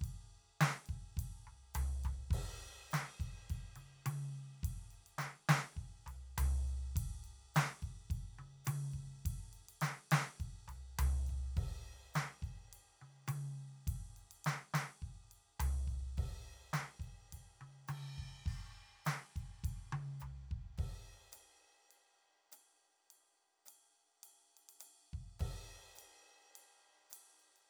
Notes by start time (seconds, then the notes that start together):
0.01 kick, ride
0.61 snare, hi-hat pedal, ride
0.86 kick, ride
1.17 kick, ride
1.47 floor tom
1.74 floor tom, hi-hat pedal, ride
2.04 kick, floor tom, ride
2.31 kick, crash
2.91 snare, hi-hat pedal, ride
3.20 kick, ride
3.50 kick, ride
3.76 high tom, ride
4.06 hi-hat pedal, high tom, ride
4.63 kick, ride
4.91 ride
5.06 ride
5.18 snare, hi-hat pedal, ride
5.49 snare, ride
5.77 kick
6.06 floor tom, ride
6.38 floor tom, hi-hat pedal, ride
6.67 ride
6.96 kick, ride
7.24 ride
7.54 snare, hi-hat pedal, ride
7.82 kick, ride
8.10 kick, ride
8.38 high tom
8.65 hi-hat pedal, high tom, ride
8.92 kick, ride
9.25 kick, ride
9.53 ride
9.69 ride
9.81 snare, hi-hat pedal, ride
10.11 snare, ride
10.40 kick, ride
10.68 floor tom, ride
10.99 floor tom, hi-hat pedal, ride
11.27 kick, ride
11.57 kick, crash
12.14 snare, hi-hat pedal, ride
12.42 kick, ride
12.73 ride
13.01 high tom
13.27 hi-hat pedal, high tom, ride
13.87 kick, ride
14.16 ride
14.31 ride
14.44 snare, hi-hat pedal, ride
14.74 snare, ride
15.02 kick
15.31 ride
15.60 floor tom, hi-hat pedal, ride
15.87 kick, ride
16.17 kick, crash
16.73 snare, hi-hat pedal, ride
17.00 kick, ride
17.32 kick, ride
17.61 high tom
17.88 hi-hat pedal, high tom, ride
18.18 kick
18.46 kick, crash
19.05 snare, hi-hat pedal, ride
19.36 kick, ride
19.64 kick, ride
19.92 high tom
20.20 floor tom, hi-hat pedal
20.51 kick
20.78 kick, crash
21.32 hi-hat pedal, ride
21.91 ride
22.52 hi-hat pedal, ride
23.10 ride
23.66 hi-hat pedal, ride
24.23 ride
24.57 ride
24.69 ride
24.80 hi-hat pedal, ride
25.13 kick
25.40 kick, crash
25.95 hi-hat pedal, ride
26.55 ride
27.10 hi-hat pedal, ride
27.39 ride
27.56 ride